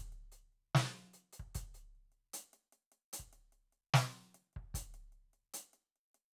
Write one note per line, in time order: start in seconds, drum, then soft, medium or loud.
0.04 kick soft
0.13 closed hi-hat soft
0.33 closed hi-hat soft
0.53 closed hi-hat soft
0.76 snare loud
1.14 closed hi-hat soft
1.34 closed hi-hat soft
1.40 kick soft
1.56 closed hi-hat medium
1.56 kick soft
1.75 closed hi-hat soft
1.96 closed hi-hat soft
2.13 closed hi-hat soft
2.34 closed hi-hat loud
2.54 closed hi-hat soft
2.73 closed hi-hat soft
2.93 closed hi-hat soft
3.14 closed hi-hat loud
3.20 kick soft
3.34 closed hi-hat soft
3.53 closed hi-hat soft
3.73 closed hi-hat soft
3.95 snare loud
4.14 closed hi-hat soft
4.35 closed hi-hat soft
4.54 kick soft
4.54 closed hi-hat soft
4.75 closed hi-hat loud
4.75 kick soft
4.95 closed hi-hat soft
5.13 closed hi-hat soft
5.34 closed hi-hat soft
5.55 closed hi-hat loud
5.74 closed hi-hat soft
5.97 closed hi-hat soft
6.15 closed hi-hat soft